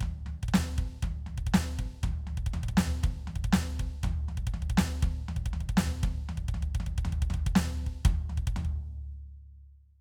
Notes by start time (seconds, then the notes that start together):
0.01 kick, floor tom
0.26 floor tom
0.43 kick
0.48 kick
0.54 snare, floor tom
0.78 kick, floor tom
1.03 kick, floor tom
1.26 floor tom
1.38 kick
1.47 kick
1.54 snare, floor tom
1.79 kick, floor tom
2.03 kick, floor tom
2.27 floor tom
2.37 kick
2.46 kick
2.54 floor tom
2.63 kick
2.69 kick
2.77 snare, floor tom
3.03 kick, floor tom
3.27 floor tom
3.36 kick
3.44 kick
3.53 snare, floor tom
3.79 kick, floor tom
4.03 kick, floor tom
4.28 floor tom
4.37 kick
4.47 kick
4.54 floor tom
4.62 kick
4.70 kick
4.78 snare, floor tom
5.03 kick, floor tom
5.29 floor tom
5.36 kick
5.46 kick
5.53 floor tom
5.61 kick
5.69 kick
5.77 snare, floor tom
6.03 kick, floor tom
6.29 floor tom
6.37 kick
6.48 kick
6.54 floor tom
6.62 kick
6.75 kick
6.80 floor tom
6.86 kick
6.98 kick
7.05 floor tom
7.12 kick
7.22 kick
7.30 kick, floor tom
7.47 kick
7.56 kick, snare, floor tom
7.87 kick
8.05 kick, floor tom
8.29 floor tom
8.38 kick
8.47 kick
8.56 floor tom
8.65 kick